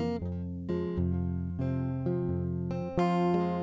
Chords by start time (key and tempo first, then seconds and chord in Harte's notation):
F minor, 88 BPM
0.00 F:min